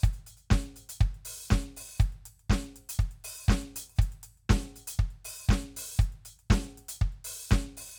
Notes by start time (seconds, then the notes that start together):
0.01 kick, hi-hat pedal
0.05 closed hi-hat
0.13 closed hi-hat
0.24 closed hi-hat, kick
0.38 closed hi-hat
0.51 kick, snare
0.64 closed hi-hat
0.77 closed hi-hat
0.90 closed hi-hat
1.01 kick, closed hi-hat
1.15 closed hi-hat
1.26 open hi-hat
1.49 kick, snare, hi-hat pedal
1.64 closed hi-hat
1.77 open hi-hat
1.92 open hi-hat
1.98 kick, closed hi-hat, hi-hat pedal
2.13 closed hi-hat
2.22 kick
2.26 closed hi-hat
2.40 closed hi-hat
2.50 kick, snare
2.65 closed hi-hat
2.77 closed hi-hat
2.90 closed hi-hat
3.00 kick, closed hi-hat
3.12 closed hi-hat
3.25 open hi-hat
3.46 kick, hi-hat pedal
3.50 snare
3.62 closed hi-hat
3.67 kick
3.77 open hi-hat
3.90 open hi-hat
3.97 kick, hi-hat pedal
4.03 closed hi-hat
4.13 closed hi-hat
4.24 closed hi-hat
4.38 closed hi-hat
4.50 kick, snare
4.63 closed hi-hat
4.76 closed hi-hat
4.88 closed hi-hat
5.00 kick, closed hi-hat
5.11 closed hi-hat
5.25 open hi-hat
5.41 open hi-hat
5.46 kick, hi-hat pedal
5.51 snare
5.63 closed hi-hat
5.77 open hi-hat
5.92 open hi-hat
5.98 kick, closed hi-hat, hi-hat pedal
6.13 closed hi-hat
6.20 kick
6.26 closed hi-hat
6.40 closed hi-hat
6.51 kick, snare
6.65 closed hi-hat
6.78 closed hi-hat
6.89 closed hi-hat
7.02 kick, closed hi-hat
7.13 closed hi-hat
7.25 open hi-hat
7.39 open hi-hat
7.51 kick, snare, hi-hat pedal
7.78 open hi-hat
7.92 open hi-hat